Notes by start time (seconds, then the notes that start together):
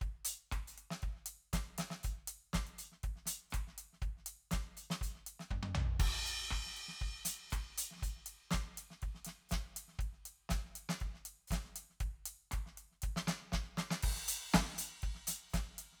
0.01 kick, closed hi-hat
0.25 closed hi-hat
0.51 kick, cross-stick, closed hi-hat
0.67 closed hi-hat
0.78 closed hi-hat
0.90 snare
1.02 kick, closed hi-hat
1.16 snare
1.26 closed hi-hat
1.53 kick, snare, closed hi-hat
1.78 snare, closed hi-hat
1.90 snare
2.03 closed hi-hat, kick
2.17 snare
2.27 closed hi-hat
2.53 kick, snare, closed hi-hat
2.67 closed hi-hat
2.78 closed hi-hat
2.92 snare
3.03 kick, closed hi-hat
3.16 snare
3.26 open hi-hat, snare
3.50 kick, cross-stick, closed hi-hat, hi-hat pedal
3.67 snare
3.78 closed hi-hat
3.93 snare
4.02 kick, closed hi-hat
4.17 snare
4.26 closed hi-hat
4.51 kick, snare, closed hi-hat
4.68 snare
4.77 closed hi-hat
4.90 snare
5.01 closed hi-hat, kick
5.15 snare
5.26 closed hi-hat
5.39 snare
5.50 kick, high tom
5.63 high tom
5.75 floor tom
5.99 kick, ride
6.24 closed hi-hat, snare
6.50 kick, cross-stick
6.66 snare
6.76 closed hi-hat
6.88 snare
7.00 closed hi-hat, kick
7.15 cross-stick
7.25 open hi-hat, snare
7.50 kick, cross-stick, closed hi-hat, hi-hat pedal
7.77 closed hi-hat
7.91 snare
7.95 snare
7.98 snare
8.00 closed hi-hat, kick, snare
8.16 snare
8.26 closed hi-hat
8.51 closed hi-hat, kick, snare
8.77 closed hi-hat
8.90 snare
9.02 kick, closed hi-hat
9.14 snare
9.24 snare, open hi-hat
9.49 kick, snare, closed hi-hat, hi-hat pedal
9.76 closed hi-hat
9.88 snare
9.92 snare
9.99 kick, closed hi-hat
10.12 snare
10.18 snare
10.25 kick, closed hi-hat
10.49 kick, snare, closed hi-hat
10.64 snare
10.75 closed hi-hat
10.89 snare
11.00 kick, closed hi-hat
11.14 snare
11.25 open hi-hat
11.47 kick, hi-hat pedal
11.52 snare, closed hi-hat
11.64 snare
11.76 closed hi-hat
11.89 snare
12.00 kick, closed hi-hat
12.25 closed hi-hat
12.51 kick, cross-stick, closed hi-hat
12.66 snare
12.77 closed hi-hat
12.91 snare
13.02 kick, closed hi-hat
13.16 snare
13.27 snare
13.52 kick, snare
13.63 snare
13.77 snare
13.90 snare
14.03 kick, crash
14.16 snare
14.28 open hi-hat
14.51 kick, snare, closed hi-hat, hi-hat pedal
14.68 snare
14.78 closed hi-hat
14.90 snare
15.02 kick, closed hi-hat
15.14 snare
15.27 open hi-hat, snare
15.50 snare, hi-hat pedal
15.54 kick, closed hi-hat
15.78 closed hi-hat
15.92 snare